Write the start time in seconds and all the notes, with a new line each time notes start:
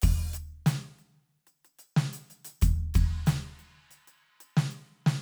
0.02 kick, percussion
0.34 percussion
0.66 snare, percussion
0.99 percussion
1.30 percussion
1.47 percussion
1.65 percussion
1.79 percussion
1.97 snare
2.13 percussion
2.30 percussion
2.45 percussion
2.62 kick, percussion
2.95 kick, percussion, crash
3.27 snare, percussion
3.60 percussion
3.91 percussion
4.08 percussion
4.26 percussion
4.41 percussion
4.57 snare
4.71 percussion
5.07 snare